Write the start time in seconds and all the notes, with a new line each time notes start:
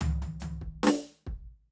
0.01 floor tom, high tom
0.22 floor tom, high tom
0.40 floor tom, hi-hat pedal, high tom
0.61 kick
0.83 snare
0.87 snare
1.27 kick